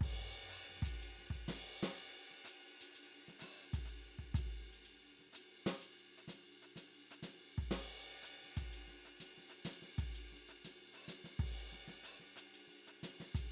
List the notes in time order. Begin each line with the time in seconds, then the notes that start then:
0.01 kick, hi-hat pedal, ride
0.20 snare
0.50 hi-hat pedal
0.56 ride
0.70 snare
0.78 snare
0.83 kick, ride
0.95 hi-hat pedal
1.03 ride
1.19 snare
1.31 kick
1.49 snare, hi-hat pedal, ride
1.83 snare, ride
1.96 hi-hat pedal, ride
2.32 snare
2.45 hi-hat pedal, ride
2.82 ride
2.92 hi-hat pedal
2.96 ride
3.29 snare
3.40 snare, hi-hat pedal, ride
3.74 open hi-hat, kick, ride
3.86 hi-hat pedal, ride
4.20 kick
4.35 kick, open hi-hat, ride
4.74 ride
4.86 ride
5.20 snare
5.25 snare
5.28 snare
5.33 hi-hat pedal, ride
5.67 snare, ride
5.82 ride
6.19 hi-hat pedal
6.29 snare, ride
6.63 hi-hat pedal
6.77 snare, ride
7.12 hi-hat pedal
7.24 snare, ride
7.59 kick
7.72 snare, ride
8.23 hi-hat pedal, ride
8.45 snare
8.58 kick, ride
8.67 hi-hat pedal
8.74 ride
8.89 snare
9.06 hi-hat pedal
9.21 snare, ride
9.38 snare
9.50 hi-hat pedal
9.66 snare, ride
9.73 hi-hat pedal
9.83 snare
9.99 kick, ride
10.16 ride
10.33 snare
10.50 hi-hat pedal
10.65 snare, ride
10.95 hi-hat pedal
11.09 snare, ride
11.25 snare
11.40 kick, ride
11.60 ride
11.73 snare
11.89 snare
12.04 hi-hat pedal, ride
12.21 snare
12.37 hi-hat pedal, ride
12.55 ride
12.69 snare
12.88 hi-hat pedal
13.04 snare, ride
13.21 snare
13.36 kick, ride